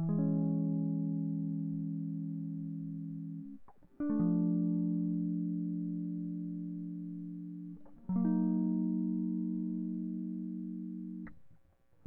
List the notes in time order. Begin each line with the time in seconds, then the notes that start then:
0.00 E3
0.09 G#3
0.18 C#4
4.00 D4
4.10 A3
4.20 F3
8.09 F#3
8.16 A#3
8.25 D#4